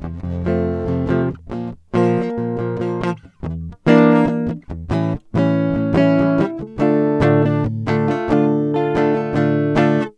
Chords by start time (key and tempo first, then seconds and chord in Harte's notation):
D minor, 142 BPM
0.04 F:maj
1.73 A#:(1,5)
3.42 E:hdim7
5.11 A:7
6.80 D:min/5